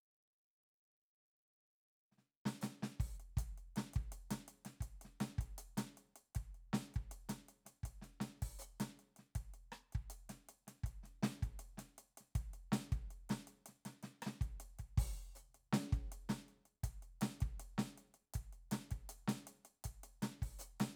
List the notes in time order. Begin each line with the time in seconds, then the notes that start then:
2.11 snare
2.18 snare
2.45 snare
2.61 snare, hi-hat pedal
2.82 snare
3.00 kick, open hi-hat
3.20 closed hi-hat
3.37 kick, closed hi-hat
3.58 closed hi-hat
3.76 snare, closed hi-hat
3.93 kick, closed hi-hat
4.12 closed hi-hat
4.30 snare, closed hi-hat
4.48 closed hi-hat
4.65 snare, closed hi-hat
4.80 kick, closed hi-hat
5.01 snare, closed hi-hat
5.20 snare, closed hi-hat
5.38 kick, closed hi-hat
5.58 closed hi-hat
5.77 snare, closed hi-hat
5.97 closed hi-hat
6.16 closed hi-hat
6.35 kick, closed hi-hat
6.54 closed hi-hat
6.73 snare, closed hi-hat
6.94 kick, closed hi-hat
7.11 closed hi-hat
7.29 snare, closed hi-hat
7.48 closed hi-hat
7.65 snare, closed hi-hat
7.83 kick, closed hi-hat
8.01 snare, closed hi-hat
8.20 snare, closed hi-hat
8.42 kick, open hi-hat
8.59 closed hi-hat, hi-hat pedal
8.80 snare, closed hi-hat
8.99 closed hi-hat
9.16 snare, closed hi-hat
9.35 kick, closed hi-hat
9.54 closed hi-hat
9.72 cross-stick, closed hi-hat
9.92 kick, closed hi-hat
10.10 closed hi-hat
10.29 snare, closed hi-hat
10.49 closed hi-hat
10.67 snare, closed hi-hat
10.83 kick, closed hi-hat
11.03 snare, closed hi-hat
11.23 snare, closed hi-hat
11.42 kick, closed hi-hat
11.59 closed hi-hat
11.77 snare, closed hi-hat
11.98 closed hi-hat
12.17 snare, closed hi-hat
12.35 kick, closed hi-hat
12.53 closed hi-hat
12.72 snare, closed hi-hat
12.92 kick, closed hi-hat
13.10 closed hi-hat
13.29 snare, closed hi-hat
13.47 closed hi-hat
13.66 snare, closed hi-hat
13.85 snare, closed hi-hat
14.03 snare, closed hi-hat
14.22 cross-stick, closed hi-hat
14.26 snare
14.41 kick, closed hi-hat
14.60 closed hi-hat
14.79 kick, closed hi-hat
14.97 open hi-hat, kick
15.35 closed hi-hat, hi-hat pedal
15.54 closed hi-hat
15.73 snare, closed hi-hat
15.92 kick, closed hi-hat
16.12 closed hi-hat
16.29 snare, closed hi-hat
16.48 closed hi-hat
16.65 closed hi-hat
16.83 kick, closed hi-hat
17.02 closed hi-hat
17.21 snare, closed hi-hat
17.40 kick, closed hi-hat
17.60 closed hi-hat
17.78 snare, closed hi-hat
17.98 closed hi-hat
18.14 closed hi-hat
18.34 kick, closed hi-hat
18.53 closed hi-hat
18.71 snare, closed hi-hat
18.91 kick, closed hi-hat
19.09 closed hi-hat
19.28 snare, closed hi-hat
19.47 closed hi-hat
19.65 closed hi-hat
19.84 kick, closed hi-hat
20.03 closed hi-hat
20.22 snare, closed hi-hat
20.42 kick, open hi-hat
20.59 closed hi-hat, hi-hat pedal
20.80 snare, closed hi-hat